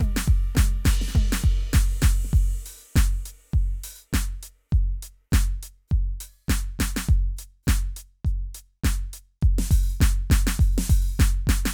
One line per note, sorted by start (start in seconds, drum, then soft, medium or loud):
0.01 kick loud
0.01 hi-hat pedal medium
0.01 mid tom loud
0.17 snare loud
0.28 kick loud
0.28 ride loud
0.56 kick loud
0.56 snare loud
0.56 mid tom loud
0.85 kick loud
0.85 snare loud
0.85 ride loud
1.02 snare medium
1.09 snare soft
1.11 snare soft
1.16 kick loud
1.16 mid tom loud
1.33 snare loud
1.44 kick loud
1.44 ride loud
1.74 kick loud
1.74 snare loud
1.74 crash loud
2.02 kick loud
2.02 snare loud
2.02 crash loud
2.25 snare soft
2.34 kick loud
2.34 hi-hat pedal medium
2.66 open hi-hat loud
2.96 kick loud
2.96 snare loud
2.96 hi-hat pedal medium
3.26 closed hi-hat loud
3.52 kick loud
3.52 hi-hat pedal soft
3.57 closed hi-hat soft
3.84 open hi-hat loud
4.14 kick medium
4.14 snare loud
4.43 closed hi-hat loud
4.70 kick loud
4.70 hi-hat pedal soft
4.74 closed hi-hat soft
5.03 closed hi-hat loud
5.31 kick loud
5.31 snare loud
5.31 hi-hat pedal soft
5.63 closed hi-hat loud
5.88 kick loud
5.88 hi-hat pedal soft
5.93 closed hi-hat soft
6.21 open hi-hat loud
6.21 hi-hat pedal soft
6.48 kick medium
6.48 snare loud
6.48 closed hi-hat soft
6.48 hi-hat pedal soft
6.80 open hi-hat loud
6.80 kick medium
6.80 snare loud
6.97 snare loud
7.05 hi-hat pedal soft
7.09 closed hi-hat soft
7.09 kick loud
7.37 closed hi-hat loud
7.37 hi-hat pedal soft
7.64 hi-hat pedal soft
7.68 kick loud
7.68 snare loud
7.97 closed hi-hat loud
8.25 closed hi-hat soft
8.25 kick medium
8.55 closed hi-hat loud
8.84 kick loud
8.84 snare loud
9.14 closed hi-hat loud
9.42 closed hi-hat soft
9.42 kick loud
9.59 snare loud
9.71 open hi-hat loud
9.71 kick loud
10.01 kick loud
10.01 snare loud
10.22 snare soft
10.31 kick loud
10.31 snare loud
10.47 snare loud
10.60 open hi-hat medium
10.60 kick loud
10.78 snare loud
10.90 open hi-hat loud
10.90 kick loud
11.20 kick loud
11.20 snare loud
11.48 kick loud
11.48 snare loud
11.66 snare loud